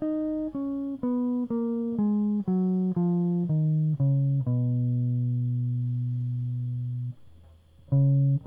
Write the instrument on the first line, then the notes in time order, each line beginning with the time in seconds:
electric guitar
0.02 D#4
0.55 C#4
1.04 B3
1.51 A#3
1.99 G#3
2.49 F#3
2.97 F3
3.50 D#3
4.01 C#3
4.48 B2
7.94 C#3